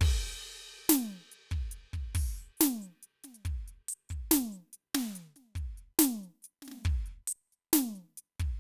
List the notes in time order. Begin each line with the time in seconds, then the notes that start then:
0.01 kick, crash
0.66 closed hi-hat
0.89 closed hi-hat, snare
1.11 closed hi-hat
1.32 closed hi-hat
1.51 kick, closed hi-hat
1.71 closed hi-hat
1.93 kick, closed hi-hat
2.15 kick, open hi-hat
2.37 open hi-hat
2.57 snare, hi-hat pedal
2.62 closed hi-hat
2.82 closed hi-hat
3.03 closed hi-hat
3.24 snare, closed hi-hat
3.34 closed hi-hat
3.45 kick, closed hi-hat
3.68 closed hi-hat
3.89 closed hi-hat
4.09 closed hi-hat, kick
4.31 closed hi-hat, snare
4.52 closed hi-hat
4.73 closed hi-hat
4.95 snare, closed hi-hat
5.15 closed hi-hat
5.36 snare, closed hi-hat
5.55 kick, closed hi-hat
5.77 closed hi-hat
5.99 open hi-hat, snare
6.23 open hi-hat
6.42 closed hi-hat, hi-hat pedal
6.62 snare, closed hi-hat
6.68 snare
6.72 snare
6.79 snare
6.84 kick, snare, closed hi-hat
7.06 closed hi-hat
7.27 closed hi-hat
7.52 closed hi-hat
7.73 snare, closed hi-hat
7.81 snare
7.95 closed hi-hat
8.17 closed hi-hat
8.40 kick, closed hi-hat